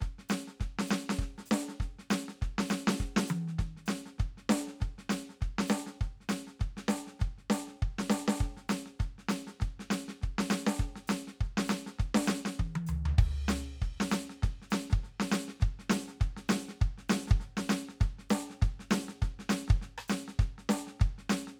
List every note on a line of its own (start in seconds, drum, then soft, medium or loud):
0.01 kick medium
0.01 snare soft
0.19 snare soft
0.29 snare loud
0.29 hi-hat pedal medium
0.48 snare soft
0.60 kick medium
0.60 snare soft
0.79 snare loud
0.87 snare loud
0.87 hi-hat pedal medium
1.10 snare loud
1.19 kick medium
1.19 snare soft
1.38 snare soft
1.46 hi-hat pedal medium
1.52 snare loud
1.69 snare soft
1.80 kick medium
1.80 snare soft
1.99 snare soft
2.10 snare loud
2.10 hi-hat pedal medium
2.29 snare soft
2.42 kick medium
2.42 snare soft
2.59 snare loud
2.69 snare loud
2.69 hi-hat pedal medium
2.88 snare loud
3.00 kick medium
3.00 snare soft
3.17 snare loud
3.28 hi-hat pedal medium
3.28 high tom loud
3.48 snare soft
3.59 kick medium
3.59 snare soft
3.77 snare soft
3.86 snare loud
3.86 hi-hat pedal medium
4.06 snare soft
4.19 kick medium
4.19 snare soft
4.38 snare soft
4.50 snare loud
4.50 hi-hat pedal medium
4.68 snare soft
4.81 kick medium
4.81 snare soft
4.99 snare soft
5.10 snare loud
5.10 hi-hat pedal medium
5.15 kick soft
5.29 snare soft
5.41 kick medium
5.41 snare soft
5.59 snare loud
5.68 snare loud
5.68 hi-hat pedal medium
5.87 snare soft
6.01 kick medium
6.01 snare soft
6.21 snare soft
6.29 snare loud
6.29 hi-hat pedal medium
6.47 snare soft
6.60 kick medium
6.60 snare soft
6.77 snare medium
6.89 snare loud
6.89 hi-hat pedal medium
7.07 snare soft
7.20 kick medium
7.20 snare soft
7.38 snare soft
7.50 snare loud
7.50 hi-hat pedal medium
7.68 snare soft
7.83 kick medium
7.83 snare soft
7.99 snare medium
8.10 snare loud
8.10 hi-hat pedal medium
8.28 snare loud
8.41 kick medium
8.41 snare soft
8.57 snare soft
8.69 snare loud
8.69 hi-hat pedal medium
8.86 snare soft
9.00 kick medium
9.00 snare soft
9.19 snare soft
9.29 snare loud
9.29 hi-hat pedal medium
9.47 snare soft
9.60 kick medium
9.60 snare soft
9.80 snare soft
9.91 snare loud
9.91 hi-hat pedal medium
10.09 snare medium
10.22 kick medium
10.22 snare soft
10.39 snare loud
10.50 snare loud
10.50 hi-hat pedal medium
10.67 snare loud
10.80 kick medium
10.80 snare soft
10.96 snare soft
11.08 snare loud
11.08 hi-hat pedal medium
11.13 kick soft
11.28 snare soft
11.41 kick medium
11.41 snare soft
11.58 snare loud
11.68 snare loud
11.68 hi-hat pedal medium
11.87 snare soft
11.99 kick medium
11.99 snare soft
12.15 snare loud
12.27 snare loud
12.27 hi-hat pedal medium
12.46 snare medium
12.60 kick medium
12.60 high tom medium
12.76 high tom loud
12.87 floor tom loud
12.87 hi-hat pedal medium
13.06 floor tom loud
13.19 kick loud
13.19 ride medium
13.39 kick soft
13.49 snare loud
13.49 hi-hat pedal medium
13.53 kick soft
13.82 kick medium
13.82 snare soft
14.01 snare loud
14.11 kick soft
14.11 snare loud
14.11 hi-hat pedal medium
14.30 snare soft
14.43 kick medium
14.43 snare soft
14.62 snare soft
14.71 snare loud
14.71 hi-hat pedal medium
14.90 kick loud
14.90 snare soft
15.04 snare soft
15.20 snare loud
15.31 kick soft
15.31 snare loud
15.31 hi-hat pedal medium
15.48 snare soft
15.60 kick loud
15.60 snare soft
15.79 snare soft
15.90 snare loud
15.90 hi-hat pedal medium
16.08 snare soft
16.21 kick loud
16.21 snare soft
16.37 snare soft
16.49 snare loud
16.49 hi-hat pedal medium
16.69 snare soft
16.81 kick loud
16.81 snare soft
16.98 snare soft
17.03 kick soft
17.09 snare loud
17.09 hi-hat pedal medium
17.25 kick soft
17.25 snare soft
17.31 kick loud
17.40 snare soft
17.57 snare medium
17.69 snare loud
17.69 hi-hat pedal medium
17.89 snare soft
18.01 kick loud
18.01 snare soft
18.19 kick soft
18.19 snare soft
18.30 snare loud
18.30 hi-hat pedal medium
18.50 snare soft
18.62 kick loud
18.62 snare soft
18.80 kick soft
18.80 snare soft
18.91 snare loud
18.91 hi-hat pedal medium
19.09 snare soft
19.22 kick medium
19.22 snare soft
19.39 kick soft
19.39 snare soft
19.50 snare loud
19.50 hi-hat pedal medium
19.68 kick loud
19.68 snare soft
19.82 snare soft
19.98 cross-stick medium
20.08 snare loud
20.08 hi-hat pedal medium
20.28 snare soft
20.39 kick loud
20.39 snare soft
20.58 snare soft
20.70 snare loud
20.70 hi-hat pedal medium
20.87 snare soft
21.00 kick loud
21.00 snare soft
21.18 kick soft
21.18 snare soft
21.30 snare loud
21.30 hi-hat pedal medium
21.48 snare soft